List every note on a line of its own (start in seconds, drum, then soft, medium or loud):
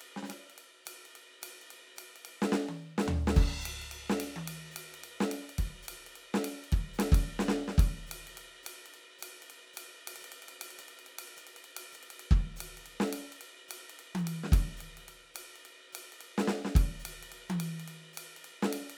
0.01 ride medium
0.16 snare medium
0.23 snare medium
0.23 hi-hat pedal medium
0.29 snare soft
0.29 ride medium
0.50 ride soft
0.58 ride medium
0.85 hi-hat pedal medium
0.85 ride loud
1.05 ride medium
1.42 hi-hat pedal medium
1.42 ride loud
1.62 ride soft
1.71 ride medium
1.96 hi-hat pedal medium
1.96 ride loud
2.16 ride medium
2.25 ride loud
2.42 snare loud
2.42 hi-hat pedal soft
2.52 snare loud
2.69 high tom medium
2.98 snare loud
2.98 hi-hat pedal medium
3.06 kick soft
3.06 floor tom loud
3.19 hi-hat pedal soft
3.27 snare loud
3.36 kick loud
3.36 crash loud
3.61 hi-hat pedal medium
3.66 ride loud
3.82 ride medium
3.91 ride medium
4.10 snare loud
4.10 hi-hat pedal medium
4.20 ride loud
4.36 high tom medium
4.48 ride loud
4.72 hi-hat pedal medium
4.76 ride loud
4.94 ride medium
5.04 ride medium
5.21 snare loud
5.21 hi-hat pedal medium
5.32 ride loud
5.49 ride medium
5.58 kick medium
5.58 ride loud
5.83 hi-hat pedal medium
5.88 ride loud
6.07 ride medium
6.16 ride medium
6.34 snare loud
6.34 hi-hat pedal medium
6.45 ride loud
6.64 ride medium
6.72 kick loud
6.72 ride medium
6.94 hi-hat pedal medium
6.99 snare loud
6.99 ride loud
7.12 kick loud
7.12 ride loud
7.39 snare loud
7.39 hi-hat pedal medium
7.48 snare loud
7.68 snare medium
7.78 kick loud
7.78 ride loud
8.07 hi-hat pedal medium
8.12 ride loud
8.27 ride medium
8.63 hi-hat pedal medium
8.63 ride loud
8.86 ride medium
8.94 ride medium
9.19 hi-hat pedal medium
9.19 ride loud
9.42 ride medium
9.50 ride medium
9.73 hi-hat pedal medium
9.73 ride loud
10.08 ride loud
10.16 ride medium
10.21 hi-hat pedal medium
10.21 ride medium
10.32 ride medium
10.42 ride medium
10.49 ride medium
10.61 ride loud
10.71 ride medium
10.79 hi-hat pedal medium
10.79 ride medium
10.88 ride medium
10.99 ride medium
11.06 ride medium
11.19 ride loud
11.28 ride medium
11.37 hi-hat pedal medium
11.37 ride medium
11.47 ride medium
11.57 ride medium
11.64 ride medium
11.77 ride loud
11.92 hi-hat pedal medium
11.92 ride medium
12.03 ride medium
12.10 ride medium
12.20 ride medium
12.31 kick loud
12.56 hi-hat pedal medium
12.61 ride loud
12.77 ride medium
12.86 ride medium
13.00 snare loud
13.06 hi-hat pedal medium
13.13 ride loud
13.32 ride medium
13.41 ride medium
13.68 hi-hat pedal medium
13.68 ride loud
13.90 ride medium
13.99 ride medium
14.15 hi-hat pedal medium
14.15 high tom loud
14.27 ride loud
14.44 snare medium
14.52 kick loud
14.52 ride loud
14.77 hi-hat pedal medium
14.77 ride medium
14.97 ride medium
15.08 ride medium
15.34 hi-hat pedal medium
15.34 ride loud
15.56 ride soft
15.65 ride medium
15.93 hi-hat pedal medium
15.93 ride loud
16.12 ride medium
16.21 ride medium
16.38 snare loud
16.38 hi-hat pedal medium
16.48 snare loud
16.65 snare medium
16.75 kick loud
16.75 ride loud
17.00 hi-hat pedal medium
17.05 ride loud
17.23 ride medium
17.32 ride medium
17.49 hi-hat pedal medium
17.49 high tom loud
17.60 ride loud
17.80 ride medium
17.88 ride medium
18.13 hi-hat pedal medium
18.18 ride loud
18.37 ride medium
18.45 ride medium
18.63 snare loud
18.63 hi-hat pedal medium
18.73 ride loud
18.90 ride medium